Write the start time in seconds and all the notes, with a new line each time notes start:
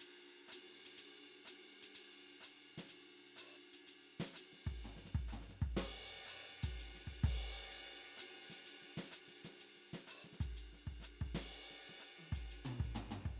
0.01 ride
0.49 hi-hat pedal, ride
0.70 hi-hat pedal
0.86 ride
0.96 hi-hat pedal, ride
1.46 hi-hat pedal, ride
1.83 ride
1.91 hi-hat pedal
1.96 ride
2.41 hi-hat pedal, ride
2.78 snare, ride
2.88 hi-hat pedal, ride
3.37 hi-hat pedal, ride
3.74 ride
3.84 hi-hat pedal, ride
4.21 snare
4.34 hi-hat pedal, ride
4.54 snare
4.67 kick
4.79 hi-hat pedal
4.85 floor tom
4.97 snare
5.06 snare
5.15 kick
5.29 hi-hat pedal
5.33 floor tom
5.42 snare
5.50 snare
5.62 kick
5.74 snare, hi-hat pedal
5.79 ride
6.17 snare
6.26 hi-hat pedal
6.31 ride
6.50 snare
6.64 kick, ride
6.72 hi-hat pedal
6.80 ride
6.96 snare
7.08 kick
7.24 kick, hi-hat pedal, ride
7.58 ride
7.69 hi-hat pedal, ride
8.18 hi-hat pedal, ride
8.51 snare, ride
8.62 hi-hat pedal
8.67 ride
8.83 snare
8.98 snare
9.12 hi-hat pedal, ride
9.29 snare
9.45 snare, ride
9.58 hi-hat pedal, ride
9.77 snare
9.94 snare
10.08 hi-hat pedal, ride
10.25 snare
10.33 snare
10.41 kick, ride
10.51 hi-hat pedal
10.58 ride
10.73 snare
10.87 kick
11.01 snare, hi-hat pedal, ride
11.22 kick
11.35 snare, ride
11.47 hi-hat pedal
11.53 ride
11.71 snare
11.90 snare
12.00 hi-hat pedal
12.05 ride
12.19 high tom
12.33 kick, ride
12.44 hi-hat pedal
12.52 ride
12.66 mid tom
12.80 kick
12.96 floor tom, hi-hat pedal
13.11 floor tom
13.26 kick